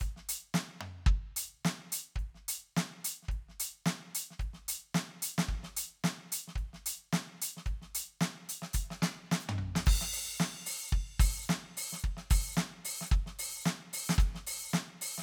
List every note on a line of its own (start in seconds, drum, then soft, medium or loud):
0.01 closed hi-hat soft
0.01 kick medium
0.17 snare soft
0.30 closed hi-hat loud
0.55 snare loud
0.82 high tom medium
1.07 kick loud
1.37 closed hi-hat loud
1.66 snare loud
1.93 closed hi-hat loud
2.16 kick medium
2.16 closed hi-hat soft
2.35 snare soft
2.49 closed hi-hat loud
2.77 snare loud
3.05 closed hi-hat loud
3.23 snare soft
3.29 kick medium
3.29 closed hi-hat soft
3.49 snare soft
3.61 closed hi-hat loud
3.87 snare loud
4.16 closed hi-hat loud
4.31 snare soft
4.40 kick medium
4.40 closed hi-hat soft
4.54 snare soft
4.69 closed hi-hat loud
4.95 snare loud
5.23 closed hi-hat loud
5.39 snare loud
5.49 kick medium
5.64 snare medium
5.77 closed hi-hat loud
6.05 snare loud
6.33 closed hi-hat loud
6.48 snare soft
6.56 kick medium
6.56 closed hi-hat soft
6.74 snare soft
6.87 closed hi-hat loud
7.13 snare loud
7.42 closed hi-hat loud
7.57 snare soft
7.67 kick medium
7.67 closed hi-hat soft
7.82 snare soft
7.96 closed hi-hat loud
8.22 snare loud
8.50 closed hi-hat loud
8.63 snare medium
8.74 closed hi-hat loud
8.74 kick medium
8.91 snare medium
9.03 snare loud
9.32 snare loud
9.41 hi-hat pedal medium
9.50 high tom loud
9.59 floor tom medium
9.76 snare loud
9.87 kick loud
9.87 crash loud
10.02 snare medium
10.14 open hi-hat loud
10.37 snare loud
10.37 hi-hat pedal medium
10.67 open hi-hat loud
10.89 kick loud
10.89 hi-hat pedal medium
11.20 open hi-hat loud
11.20 kick loud
11.45 hi-hat pedal medium
11.50 snare loud
11.78 open hi-hat loud
11.93 snare medium
12.00 closed hi-hat soft
12.00 hi-hat pedal medium
12.05 kick medium
12.18 snare medium
12.31 open hi-hat loud
12.31 kick loud
12.55 snare loud
12.55 hi-hat pedal medium
12.86 open hi-hat loud
13.02 snare medium
13.07 hi-hat pedal medium
13.12 kick loud
13.12 closed hi-hat soft
13.27 snare soft
13.40 open hi-hat loud
13.64 snare loud
13.64 hi-hat pedal medium
13.94 open hi-hat loud
14.10 snare loud
14.10 hi-hat pedal medium
14.19 kick loud
14.19 closed hi-hat medium
14.35 snare medium
14.47 open hi-hat loud
14.72 snare loud
14.72 hi-hat pedal medium
15.02 open hi-hat loud
15.19 snare medium